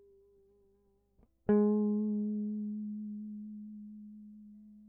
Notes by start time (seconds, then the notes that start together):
1.49 G#3